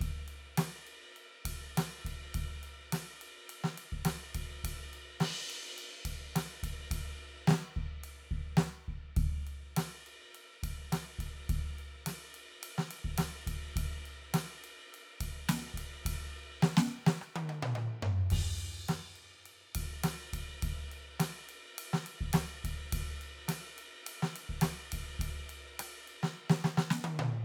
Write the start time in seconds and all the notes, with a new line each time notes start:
0.01 kick, ride
0.28 ride
0.58 snare, ride
0.87 ride
1.16 ride
1.45 kick, ride
1.77 snare, ride
2.05 kick, ride
2.34 kick, ride
2.63 ride
2.93 snare, ride
3.21 ride
3.49 ride
3.64 snare
3.78 ride
3.92 kick
4.05 snare, ride
4.35 kick, ride
4.64 kick, ride
4.93 ride
5.20 snare, ride
5.50 ride
5.78 ride
6.05 kick, ride
6.36 snare, ride
6.63 kick, ride
6.91 kick, ride
7.48 snare
7.51 snare
7.76 kick
8.04 ride
8.31 kick
8.57 snare
8.61 cross-stick
8.88 kick
9.17 kick, ride
9.47 ride
9.77 snare, ride
10.06 ride
10.35 ride
10.63 kick, ride
10.92 snare, ride
11.19 kick, ride
11.49 kick, ride
11.79 ride
12.06 snare, ride
12.34 ride
12.63 ride
12.78 snare
12.91 ride
13.05 kick
13.18 snare, ride
13.47 kick, ride
13.76 kick, ride
14.06 ride
14.34 snare, ride
14.64 ride
14.94 ride
15.21 kick, ride
15.49 snare, ride
15.74 kick, ride
16.05 kick, ride
16.63 snare
16.77 snare
17.07 snare
17.21 cross-stick
17.36 high tom
17.49 high tom
17.63 mid tom
17.75 mid tom
18.03 floor tom
18.30 kick, ride, crash
18.58 ride
18.89 snare, ride
19.16 ride
19.46 ride
19.75 kick, ride
20.04 snare, ride
20.33 kick, ride
20.63 kick, ride
20.92 ride
21.20 snare, ride
21.49 ride
21.78 ride
21.93 snare
22.06 ride
22.21 kick
22.33 snare, ride
22.64 kick, ride
22.93 kick, ride
23.21 ride
23.48 snare, ride
23.78 ride
24.07 ride
24.23 snare
24.36 ride
24.49 kick
24.61 snare, ride
24.92 kick, ride
25.19 kick, ride
25.49 ride
25.79 cross-stick, ride
26.08 ride
26.23 snare
26.50 snare
26.64 snare
26.78 snare
26.90 snare
27.04 high tom
27.19 mid tom